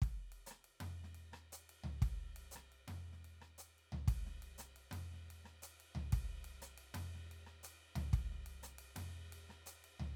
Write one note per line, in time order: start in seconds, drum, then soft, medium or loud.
0.01 kick medium
0.01 ride soft
0.32 ride soft
0.46 cross-stick soft
0.46 hi-hat pedal medium
0.51 cross-stick soft
0.64 ride soft
0.80 mid tom medium
0.80 ride soft
1.03 snare soft
1.14 ride soft
1.32 cross-stick soft
1.32 snare soft
1.52 hi-hat pedal medium
1.52 ride soft
1.69 ride soft
1.83 floor tom medium
2.02 kick medium
2.02 ride soft
2.18 snare soft
2.36 ride soft
2.46 cross-stick soft
2.51 snare soft
2.51 hi-hat pedal medium
2.72 ride soft
2.88 mid tom medium
2.88 ride soft
3.12 snare soft
3.24 ride soft
3.40 cross-stick soft
3.40 snare soft
3.58 hi-hat pedal medium
3.58 ride soft
3.78 ride soft
3.92 floor tom medium
4.07 kick medium
4.07 ride medium
4.26 snare soft
4.42 ride soft
4.58 cross-stick soft
4.58 snare soft
4.58 hi-hat pedal medium
4.76 ride soft
4.91 mid tom medium
4.91 ride medium
5.13 snare soft
5.30 ride soft
5.44 cross-stick soft
5.44 snare soft
5.62 hi-hat pedal medium
5.62 ride medium
5.80 ride soft
5.95 floor tom medium
6.12 kick medium
6.12 ride medium
6.44 ride soft
6.60 cross-stick soft
6.60 snare soft
6.60 hi-hat pedal medium
6.77 ride soft
6.94 mid tom medium
6.94 ride medium
7.14 snare soft
7.31 ride soft
7.45 cross-stick soft
7.45 snare soft
7.63 hi-hat pedal medium
7.63 ride medium
7.95 floor tom medium
7.95 ride soft
8.13 kick medium
8.13 ride soft
8.31 snare soft
8.46 ride soft
8.62 cross-stick soft
8.62 snare soft
8.62 hi-hat pedal medium
8.78 ride medium
8.96 mid tom medium
8.96 ride medium
9.09 snare soft
9.32 ride soft
9.49 cross-stick soft
9.49 snare soft
9.66 hi-hat pedal medium
9.66 ride medium
9.84 ride soft
9.99 floor tom medium